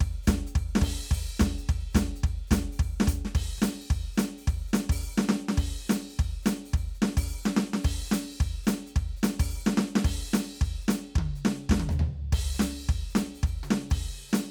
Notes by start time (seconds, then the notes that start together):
0.01 open hi-hat, kick
0.24 closed hi-hat, kick, snare, hi-hat pedal
0.47 closed hi-hat
0.56 open hi-hat, kick
0.76 snare, hi-hat pedal
0.82 kick, crash
1.12 open hi-hat, kick
1.37 closed hi-hat, kick, snare, hi-hat pedal
1.58 open hi-hat
1.69 open hi-hat, kick
1.93 closed hi-hat, kick, snare, hi-hat pedal
2.16 closed hi-hat
2.24 open hi-hat, kick
2.48 kick, hi-hat pedal
2.52 closed hi-hat, snare
2.73 open hi-hat
2.80 open hi-hat, kick
3.01 snare, hi-hat pedal
3.08 closed hi-hat, kick
3.25 snare
3.35 kick, crash
3.58 kick, hi-hat pedal
3.62 closed hi-hat, snare
3.81 open hi-hat
3.91 open hi-hat, kick
4.15 snare, hi-hat pedal
4.19 closed hi-hat
4.38 open hi-hat
4.48 open hi-hat, kick
4.68 hi-hat pedal
4.74 closed hi-hat, snare
4.90 open hi-hat, kick
5.18 snare, hi-hat pedal
5.29 snare
5.49 snare
5.58 kick, crash
5.88 closed hi-hat, snare, hi-hat pedal
6.10 open hi-hat
6.19 open hi-hat, kick
6.43 closed hi-hat, snare, hi-hat pedal
6.66 open hi-hat
6.74 open hi-hat, kick
6.95 hi-hat pedal
7.03 snare
7.18 open hi-hat, kick
7.46 snare, hi-hat pedal
7.57 snare
7.74 snare
7.85 kick, crash
8.08 hi-hat pedal
8.12 closed hi-hat, snare
8.32 open hi-hat
8.41 open hi-hat, kick
8.64 closed hi-hat, snare, hi-hat pedal
8.88 closed hi-hat
8.96 open hi-hat, kick
9.17 hi-hat pedal
9.24 closed hi-hat, snare
9.40 open hi-hat, kick
9.67 snare, hi-hat pedal
9.78 snare
9.96 snare
10.05 kick, crash
10.31 snare, hi-hat pedal
10.35 closed hi-hat
10.55 open hi-hat
10.62 open hi-hat, kick
10.82 hi-hat pedal
10.89 closed hi-hat, snare
11.16 kick, high tom
11.36 hi-hat pedal
11.46 snare
11.70 kick, snare
11.80 high tom
11.90 floor tom, hi-hat pedal
12.00 floor tom
12.33 kick, crash
12.55 hi-hat pedal
12.60 closed hi-hat, snare
12.79 open hi-hat
12.89 kick, snare
13.10 hi-hat pedal
13.16 closed hi-hat, snare
13.35 open hi-hat
13.44 open hi-hat, kick
13.64 hi-hat pedal, high tom
13.71 snare
13.91 kick, crash
14.29 hi-hat pedal
14.34 closed hi-hat, snare